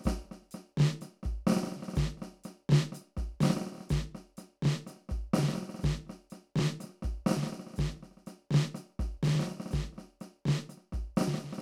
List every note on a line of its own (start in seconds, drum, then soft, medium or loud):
0.01 snare soft
0.01 hi-hat pedal medium
0.06 kick soft
0.06 snare soft
0.06 snare medium
0.13 kick soft
0.19 snare soft
0.25 snare soft
0.31 snare soft
0.42 snare soft
0.51 snare soft
0.51 hi-hat pedal medium
0.77 snare medium
0.80 snare loud
0.92 snare soft
1.01 hi-hat pedal medium
1.10 snare soft
1.17 snare soft
1.23 kick soft
1.23 snare soft
1.31 kick soft
1.47 snare medium
1.47 hi-hat pedal medium
1.50 snare medium
1.52 snare medium
1.57 snare medium
1.63 snare medium
1.67 snare soft
1.72 snare soft
1.76 snare soft
1.80 snare soft
1.83 snare soft
1.89 snare soft
1.94 kick soft
1.94 snare soft
1.94 hi-hat pedal medium
1.97 snare medium
2.07 snare soft
2.17 snare soft
2.22 snare soft
2.28 snare soft
2.33 snare soft
2.38 snare soft
2.41 snare soft
2.41 hi-hat pedal medium
2.45 snare soft
2.69 snare medium
2.72 snare loud
2.92 snare soft
2.92 hi-hat pedal medium
3.01 snare soft
3.08 snare soft
3.17 kick soft
3.17 snare soft
3.41 snare loud
3.41 hi-hat pedal medium
3.43 snare medium
3.45 snare medium
3.50 snare medium
3.57 snare medium
3.62 snare soft
3.67 snare soft
3.73 snare soft
3.75 snare soft
3.78 snare soft
3.81 snare soft
3.88 snare soft
3.88 hi-hat pedal medium
3.91 kick soft
3.91 snare medium
4.15 snare soft
4.37 snare soft
4.37 hi-hat pedal medium
4.63 snare medium
4.65 snare loud
4.87 snare soft
4.87 hi-hat pedal medium
4.90 snare soft
4.96 snare soft
5.02 snare soft
5.07 snare soft
5.09 kick soft
5.09 snare soft
5.17 kick soft
5.34 snare medium
5.34 hi-hat pedal medium
5.37 snare medium
5.38 snare medium
5.43 snare medium
5.49 snare medium
5.53 snare soft
5.55 snare soft
5.58 snare soft
5.63 snare soft
5.68 snare soft
5.69 snare soft
5.75 snare soft
5.79 snare soft
5.79 hi-hat pedal medium
5.84 kick soft
5.84 snare medium
6.00 snare soft
6.07 snare soft
6.10 snare soft
6.30 snare soft
6.30 hi-hat pedal medium
6.56 snare medium
6.59 snare loud
6.80 snare soft
6.80 hi-hat pedal medium
6.84 snare soft
6.89 snare soft
6.97 snare soft
7.03 kick soft
7.03 snare soft
7.27 snare medium
7.27 hi-hat pedal medium
7.29 snare medium
7.31 snare medium
7.37 snare medium
7.43 snare soft
7.47 snare soft
7.53 snare soft
7.60 snare soft
7.67 snare soft
7.71 snare soft
7.74 snare soft
7.74 hi-hat pedal medium
7.78 kick soft
7.78 snare medium
7.90 snare soft
7.97 snare soft
8.03 snare soft
8.11 snare soft
8.17 snare soft
8.27 snare soft
8.27 hi-hat pedal medium
8.51 snare medium
8.54 snare loud
8.75 snare soft
8.75 hi-hat pedal medium
8.86 snare soft
8.90 snare soft
8.99 kick soft
8.99 snare soft
9.08 kick soft
9.23 snare medium
9.23 hi-hat pedal medium
9.28 snare medium
9.35 snare medium
9.40 snare medium
9.43 snare soft
9.47 snare soft
9.52 snare soft
9.57 snare soft
9.60 snare soft
9.66 snare soft
9.71 kick soft
9.71 snare soft
9.71 hi-hat pedal medium
9.74 snare medium
9.77 kick soft
9.77 snare soft
9.86 snare soft
9.93 snare soft
9.97 snare soft
10.04 snare soft
10.21 snare soft
10.21 hi-hat pedal medium
10.46 snare medium
10.49 snare loud
10.59 snare soft
10.69 snare soft
10.69 hi-hat pedal medium
10.78 snare soft
10.86 snare soft
10.93 kick soft
10.93 snare soft
10.99 kick soft
11.17 snare medium
11.17 hi-hat pedal medium
11.21 snare medium
11.28 snare medium
11.34 snare soft
11.38 snare soft
11.44 snare soft
11.49 snare soft
11.53 snare soft
11.58 snare soft